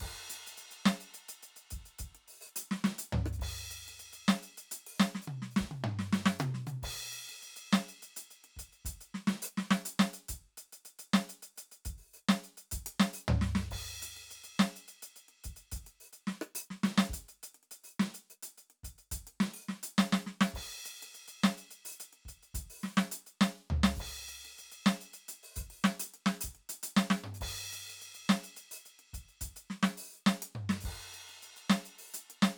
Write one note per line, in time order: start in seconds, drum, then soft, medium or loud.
0.01 kick soft
0.01 crash medium
0.11 kick soft
0.30 closed hi-hat medium
0.47 closed hi-hat medium
0.58 closed hi-hat medium
0.71 closed hi-hat medium
0.86 snare loud
1.01 closed hi-hat medium
1.14 closed hi-hat medium
1.29 closed hi-hat medium
1.43 closed hi-hat medium
1.57 closed hi-hat medium
1.71 closed hi-hat medium
1.71 kick soft
1.78 kick soft
1.81 kick soft
1.86 closed hi-hat soft
1.99 closed hi-hat medium
1.99 kick soft
2.15 closed hi-hat soft
2.28 open hi-hat medium
2.41 open hi-hat medium
2.46 hi-hat pedal soft
2.56 closed hi-hat loud
2.72 snare loud
2.85 snare loud
2.99 closed hi-hat loud
3.13 floor tom loud
3.26 cross-stick medium
3.33 hi-hat pedal soft
3.40 kick soft
3.40 crash loud
3.46 kick soft
3.48 kick soft
3.59 closed hi-hat soft
3.71 closed hi-hat medium
3.88 closed hi-hat medium
4.00 closed hi-hat medium
4.13 closed hi-hat medium
4.29 snare loud
4.43 closed hi-hat medium
4.58 closed hi-hat medium
4.72 closed hi-hat loud
4.87 open hi-hat medium
4.97 snare loud
4.97 hi-hat pedal soft
5.15 snare medium
5.22 hi-hat pedal medium
5.28 high tom medium
5.42 snare medium
5.51 hi-hat pedal soft
5.57 kick soft
5.57 snare loud
5.72 high tom medium
5.84 mid tom loud
5.99 snare medium
6.13 snare loud
6.26 snare loud
6.39 hi-hat pedal medium
6.39 high tom loud
6.55 snare medium
6.67 hi-hat pedal medium
6.67 high tom medium
6.83 kick soft
6.83 crash loud
7.13 closed hi-hat medium
7.30 closed hi-hat medium
7.43 closed hi-hat medium
7.57 closed hi-hat medium
7.73 snare loud
7.89 closed hi-hat medium
8.03 closed hi-hat medium
8.17 closed hi-hat medium
8.31 closed hi-hat soft
8.44 closed hi-hat soft
8.57 closed hi-hat medium
8.57 kick soft
8.73 closed hi-hat soft
8.85 closed hi-hat loud
8.85 kick soft
8.91 kick soft
9.01 closed hi-hat medium
9.15 snare medium
9.28 snare loud
9.43 open hi-hat loud
9.43 hi-hat pedal medium
9.58 snare loud
9.71 snare loud
9.86 closed hi-hat loud
10.00 snare loud
10.14 closed hi-hat medium
10.29 closed hi-hat loud
10.29 kick soft
10.58 closed hi-hat medium
10.73 closed hi-hat medium
10.85 closed hi-hat medium
10.99 closed hi-hat medium
11.14 snare loud
11.30 closed hi-hat medium
11.43 closed hi-hat medium
11.56 closed hi-hat medium
11.56 hi-hat pedal soft
11.72 open hi-hat soft
11.86 closed hi-hat medium
11.86 kick soft
11.92 kick soft
11.95 open hi-hat soft
11.95 kick soft
12.14 open hi-hat medium
12.14 hi-hat pedal soft
12.29 snare loud
12.44 closed hi-hat soft
12.58 closed hi-hat medium
12.72 closed hi-hat loud
12.72 kick soft
12.79 kick soft
12.87 closed hi-hat loud
13.00 snare loud
13.14 open hi-hat medium
13.29 floor tom loud
13.42 snare loud
13.56 snare loud
13.72 kick soft
13.72 crash loud
13.80 kick soft
14.03 closed hi-hat medium
14.17 closed hi-hat soft
14.31 closed hi-hat medium
14.44 closed hi-hat medium
14.60 snare loud
14.76 closed hi-hat medium
14.88 closed hi-hat medium
15.03 closed hi-hat medium
15.16 closed hi-hat soft
15.29 closed hi-hat soft
15.44 closed hi-hat medium
15.44 kick soft
15.57 closed hi-hat medium
15.72 closed hi-hat medium
15.72 kick soft
15.77 closed hi-hat medium
15.84 hi-hat pedal soft
15.84 open hi-hat medium
16.01 open hi-hat medium
16.08 hi-hat pedal soft
16.13 closed hi-hat medium
16.28 snare medium
16.42 cross-stick medium
16.56 open hi-hat loud
16.71 snare medium
16.84 snare loud
16.98 snare loud
17.04 hi-hat pedal medium
17.10 kick soft
17.14 closed hi-hat medium
17.14 kick soft
17.29 closed hi-hat soft
17.43 closed hi-hat medium
17.55 closed hi-hat soft
17.63 closed hi-hat soft
17.72 closed hi-hat medium
17.84 open hi-hat medium
18.00 snare loud
18.15 open hi-hat medium
18.30 open hi-hat medium
18.30 hi-hat pedal soft
18.43 closed hi-hat medium
18.58 closed hi-hat soft
18.70 closed hi-hat soft
18.84 closed hi-hat medium
18.84 kick soft
18.99 closed hi-hat soft
19.12 closed hi-hat loud
19.12 kick soft
19.18 kick soft
19.27 closed hi-hat medium
19.41 snare loud
19.54 open hi-hat medium
19.62 hi-hat pedal soft
19.69 snare medium
19.83 closed hi-hat loud
19.99 snare loud
20.13 snare loud
20.27 snare medium
20.41 snare loud
20.47 hi-hat pedal soft
20.54 kick soft
20.54 crash medium
20.86 closed hi-hat medium
21.03 closed hi-hat medium
21.15 closed hi-hat medium
21.28 closed hi-hat medium
21.44 snare loud
21.58 closed hi-hat medium
21.71 closed hi-hat medium
21.86 open hi-hat loud
21.91 hi-hat pedal soft
22.00 open hi-hat soft
22.00 open hi-hat medium
22.13 closed hi-hat soft
22.26 closed hi-hat medium
22.26 kick soft
22.43 closed hi-hat soft
22.55 closed hi-hat loud
22.55 kick soft
22.61 kick soft
22.70 open hi-hat medium
22.76 open hi-hat soft
22.84 snare medium
22.98 snare loud
22.98 hi-hat pedal soft
23.12 closed hi-hat loud
23.27 open hi-hat medium
23.41 snare loud
23.56 closed hi-hat soft
23.71 floor tom loud
23.84 snare loud
23.96 kick soft
23.96 hi-hat pedal medium
24.00 kick soft
24.00 crash loud
24.16 closed hi-hat soft
24.28 closed hi-hat medium
24.45 closed hi-hat soft
24.59 closed hi-hat medium
24.72 closed hi-hat medium
24.87 snare loud
25.01 closed hi-hat medium
25.14 closed hi-hat medium
25.29 closed hi-hat medium
25.43 open hi-hat medium
25.56 open hi-hat loud
25.56 kick soft
25.56 hi-hat pedal soft
25.63 kick soft
25.67 kick soft
25.67 open hi-hat medium
25.84 snare loud
26.00 closed hi-hat loud
26.14 closed hi-hat medium
26.27 snare loud
26.41 closed hi-hat loud
26.41 kick soft
26.55 closed hi-hat soft
26.70 closed hi-hat loud
26.83 closed hi-hat loud
26.97 snare loud
27.11 snare loud
27.20 snare soft
27.24 mid tom medium
27.35 hi-hat pedal medium
27.41 kick soft
27.41 crash loud
27.47 kick soft
27.73 closed hi-hat medium
27.90 closed hi-hat medium
28.02 closed hi-hat medium
28.15 closed hi-hat medium
28.30 snare loud
28.44 closed hi-hat medium
28.57 closed hi-hat medium
28.72 open hi-hat loud
28.86 closed hi-hat soft
29.00 closed hi-hat soft
29.14 closed hi-hat medium
29.14 kick soft
29.29 closed hi-hat soft
29.42 closed hi-hat loud
29.42 kick soft
29.47 kick soft
29.57 closed hi-hat medium
29.65 open hi-hat soft
29.70 snare medium
29.83 snare loud
29.87 hi-hat pedal soft
29.98 open hi-hat medium
30.12 open hi-hat soft
30.16 hi-hat pedal soft
30.27 snare loud
30.43 closed hi-hat loud
30.56 mid tom medium
30.70 snare loud
30.81 kick soft
30.81 hi-hat pedal medium
30.86 crash medium
30.90 kick soft
31.02 closed hi-hat soft
31.14 closed hi-hat medium
31.30 closed hi-hat soft
31.43 closed hi-hat soft
31.57 closed hi-hat soft
31.70 snare loud
31.85 closed hi-hat medium
31.99 open hi-hat medium
32.12 closed hi-hat loud
32.12 hi-hat pedal soft
32.30 closed hi-hat medium
32.43 snare loud